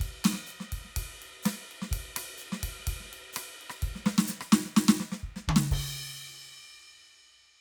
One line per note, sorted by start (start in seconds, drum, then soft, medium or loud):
0.01 kick soft
0.01 hi-hat pedal soft
0.01 ride medium
0.09 kick soft
0.25 snare loud
0.25 ride bell loud
0.34 snare soft
0.48 hi-hat pedal medium
0.48 ride soft
0.61 snare soft
0.73 kick soft
0.73 ride medium
0.85 snare soft
0.93 snare soft
0.97 kick soft
0.97 ride loud
1.23 ride medium
1.44 snare medium
1.44 hi-hat pedal medium
1.44 ride loud
1.72 ride soft
1.83 snare medium
1.92 kick soft
1.92 hi-hat pedal soft
1.92 ride loud
2.00 kick soft
2.17 cross-stick medium
2.17 ride loud
2.39 hi-hat pedal medium
2.43 ride soft
2.53 snare medium
2.64 kick soft
2.64 ride loud
2.80 snare soft
2.88 kick soft
2.88 hi-hat pedal soft
2.88 ride loud
2.94 kick soft
3.01 snare soft
3.06 snare soft
3.14 ride medium
3.34 cross-stick medium
3.34 hi-hat pedal medium
3.34 ride loud
3.62 ride soft
3.71 cross-stick medium
3.83 kick soft
3.83 hi-hat pedal soft
3.83 ride medium
3.90 kick soft
3.92 kick soft
3.96 snare soft
4.07 snare medium
4.19 snare loud
4.28 snare soft
4.28 hi-hat pedal loud
4.42 cross-stick medium
4.53 snare loud
4.66 snare soft
4.77 snare loud
4.89 snare loud
5.01 snare medium
5.13 snare medium
5.24 kick soft
5.37 snare soft
5.49 kick soft
5.49 mid tom loud
5.57 snare loud
5.72 kick soft
5.72 crash loud
5.79 kick soft